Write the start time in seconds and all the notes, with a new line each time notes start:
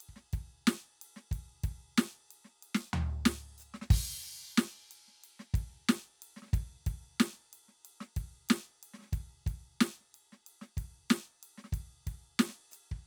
0.01 ride
0.09 kick
0.16 snare
0.33 kick, ride
0.67 snare, ride
1.02 ride
1.17 snare
1.32 kick, ride
1.64 kick, ride
1.98 snare, ride
2.31 ride
2.45 snare
2.63 ride
2.75 snare
2.94 floor tom
3.26 snare, ride
3.58 hi-hat pedal, ride bell
3.74 snare
3.82 snare
3.91 kick, crash
4.24 ride
4.58 snare, ride
4.74 snare
4.91 ride
5.08 snare
5.24 ride
5.40 snare
5.54 kick, ride
5.89 snare, ride
6.23 ride
6.37 snare
6.42 snare
6.47 snare
6.54 kick, ride
6.87 kick, ride
7.20 snare, ride
7.33 snare
7.40 snare
7.53 ride
7.69 snare
7.85 ride
8.01 snare
8.17 kick, ride
8.49 snare, ride
8.83 ride
8.94 snare
8.99 snare
9.02 snare
9.06 snare
9.10 kick, snare, ride
9.47 kick, ride
9.81 snare, ride
10.01 snare
10.15 ride
10.33 snare
10.47 ride
10.62 snare
10.77 kick, ride
11.00 kick
11.10 snare, ride
11.43 ride
11.58 snare
11.65 snare
11.73 kick, ride
12.07 kick, ride
12.40 snare, ride
12.49 snare
12.72 hi-hat pedal, ride
12.92 kick